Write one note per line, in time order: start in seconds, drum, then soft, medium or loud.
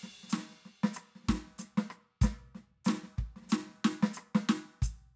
0.04 snare soft
0.24 snare soft
0.28 snare soft
0.28 hi-hat pedal loud
0.31 snare soft
0.33 snare loud
0.51 snare soft
0.66 snare soft
0.84 snare loud
0.94 cross-stick medium
0.94 hi-hat pedal loud
1.16 snare soft
1.21 snare soft
1.24 snare soft
1.29 kick medium
1.29 snare loud
1.34 snare soft
1.47 snare soft
1.52 snare soft
1.55 snare soft
1.55 hi-hat pedal loud
1.60 snare soft
1.78 snare loud
1.91 cross-stick medium
2.22 kick loud
2.22 snare medium
2.22 hi-hat pedal loud
2.56 snare soft
2.85 snare medium
2.85 hi-hat pedal loud
2.89 snare loud
2.93 snare medium
3.04 snare soft
3.18 kick medium
3.18 snare soft
3.37 snare soft
3.42 snare soft
3.46 snare soft
3.49 snare soft
3.49 hi-hat pedal loud
3.53 snare loud
3.67 snare soft
3.71 snare soft
3.74 snare soft
3.76 snare soft
3.83 snare soft
3.85 snare loud
4.03 snare loud
4.14 cross-stick medium
4.14 hi-hat pedal loud
4.35 snare loud
4.50 snare loud
4.83 kick medium
4.83 hi-hat pedal loud